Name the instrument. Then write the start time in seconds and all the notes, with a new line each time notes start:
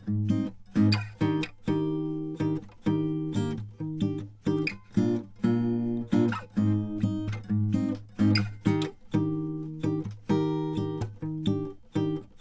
acoustic guitar
0.09 G#2
0.30 C4 D#4
0.77 G#2 C4 D#4
1.22 D#3 D4 G4
1.69 D#3 D4 G4
2.41 D#3 D4 G4
2.88 D#3 D4 G4
3.34 D#3 A#3 D4
3.38 G4
3.82 D#3
4.02 D4 G4
4.48 D#3 D4 G4
4.99 A#2 D4 F4
5.45 A#2 D4 F4
6.14 A#2 D4 F4
6.58 G#2 C4 D#4
7.05 C4 D#4
7.51 G#2
7.74 C4 D#4
8.21 G#2 C4 D#4
8.67 D#3 D4 G4
9.15 D#3 D4 G4
9.85 D#3 D4 G4
10.31 D#3 A#3 G4 A#4
10.79 D4 G4
11.24 D#3
11.47 D4 G4
11.97 D#3 D4 G4